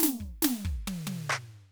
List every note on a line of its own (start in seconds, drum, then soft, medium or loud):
0.00 snare medium
0.03 snare loud
0.20 kick soft
0.42 snare medium
0.44 snare loud
0.65 kick medium
0.87 high tom loud
1.07 high tom loud
1.29 percussion loud